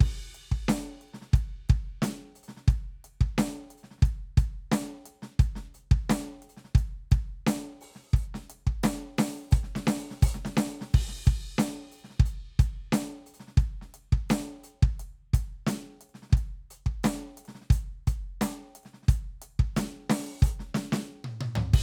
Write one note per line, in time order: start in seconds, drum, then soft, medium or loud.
0.01 kick loud
0.01 crash medium
0.35 closed hi-hat medium
0.52 kick medium
0.52 snare soft
0.69 closed hi-hat medium
0.69 snare loud
1.02 closed hi-hat soft
1.09 closed hi-hat soft
1.14 snare soft
1.22 snare soft
1.32 kick loud
1.32 snare soft
1.36 closed hi-hat medium
1.69 kick loud
1.69 closed hi-hat soft
2.02 closed hi-hat loud
2.02 snare loud
2.36 closed hi-hat medium
2.43 closed hi-hat medium
2.48 snare soft
2.57 snare soft
2.68 kick loud
2.68 closed hi-hat soft
3.05 closed hi-hat medium
3.21 kick loud
3.38 snare loud
3.38 closed hi-hat medium
3.71 closed hi-hat medium
3.78 closed hi-hat soft
3.84 snare soft
3.84 closed hi-hat soft
3.91 snare soft
3.99 snare soft
4.03 kick loud
4.03 closed hi-hat medium
4.38 closed hi-hat medium
4.38 kick loud
4.72 closed hi-hat medium
4.72 snare loud
4.83 snare soft
5.06 closed hi-hat medium
5.23 snare medium
5.40 closed hi-hat medium
5.40 kick loud
5.56 snare medium
5.75 closed hi-hat medium
5.92 kick loud
6.10 closed hi-hat loud
6.10 snare loud
6.42 closed hi-hat soft
6.50 closed hi-hat soft
6.57 snare soft
6.65 snare soft
6.75 kick loud
6.75 snare soft
6.75 closed hi-hat medium
7.12 kick loud
7.12 snare soft
7.12 closed hi-hat medium
7.47 closed hi-hat loud
7.47 snare loud
7.81 open hi-hat medium
7.96 snare soft
8.14 kick loud
8.14 open hi-hat medium
8.25 hi-hat pedal soft
8.35 snare medium
8.50 closed hi-hat medium
8.67 kick medium
8.84 snare loud
8.84 closed hi-hat loud
9.18 open hi-hat loud
9.18 snare loud
9.52 open hi-hat loud
9.52 kick loud
9.52 hi-hat pedal soft
9.64 snare soft
9.76 snare medium
9.87 snare loud
9.99 open hi-hat medium
10.11 snare soft
10.23 open hi-hat loud
10.23 kick loud
10.30 hi-hat pedal soft
10.35 snare medium
10.45 snare medium
10.57 snare loud
10.69 open hi-hat medium
10.81 snare medium
10.94 kick loud
10.94 crash loud
11.09 snare soft
11.26 closed hi-hat medium
11.26 kick loud
11.59 closed hi-hat loud
11.59 snare loud
11.92 closed hi-hat medium
11.99 closed hi-hat soft
12.04 snare soft
12.10 snare soft
12.15 snare soft
12.20 kick loud
12.20 snare soft
12.26 closed hi-hat medium
12.26 snare soft
12.60 closed hi-hat medium
12.60 kick loud
12.93 closed hi-hat loud
12.93 snare loud
13.27 closed hi-hat medium
13.34 closed hi-hat soft
13.40 snare soft
13.48 snare soft
13.58 kick loud
13.58 snare soft
13.58 closed hi-hat soft
13.82 snare soft
13.94 closed hi-hat medium
14.13 kick loud
14.30 closed hi-hat medium
14.30 snare loud
14.64 closed hi-hat medium
14.83 kick loud
15.00 closed hi-hat medium
15.34 kick loud
15.34 closed hi-hat medium
15.67 closed hi-hat loud
15.67 snare loud
16.01 closed hi-hat medium
16.10 closed hi-hat soft
16.15 snare soft
16.23 snare soft
16.30 kick loud
16.30 snare soft
16.37 snare soft
16.37 closed hi-hat medium
16.71 closed hi-hat medium
16.87 kick medium
17.04 closed hi-hat medium
17.04 snare loud
17.38 closed hi-hat medium
17.46 snare soft
17.46 closed hi-hat soft
17.55 snare soft
17.62 snare soft
17.71 closed hi-hat medium
17.71 kick loud
18.08 closed hi-hat medium
18.08 kick loud
18.41 closed hi-hat loud
18.41 snare loud
18.76 closed hi-hat medium
18.84 snare soft
18.84 closed hi-hat soft
18.94 snare soft
19.03 snare soft
19.09 closed hi-hat medium
19.09 kick loud
19.42 closed hi-hat medium
19.60 kick loud
19.77 open hi-hat loud
19.77 snare loud
20.10 open hi-hat loud
20.10 snare loud
20.43 open hi-hat loud
20.43 kick loud
20.60 snare soft
20.75 snare loud
20.93 snare loud
21.25 high tom loud
21.41 high tom loud
21.56 floor tom loud
21.74 kick loud
21.74 crash loud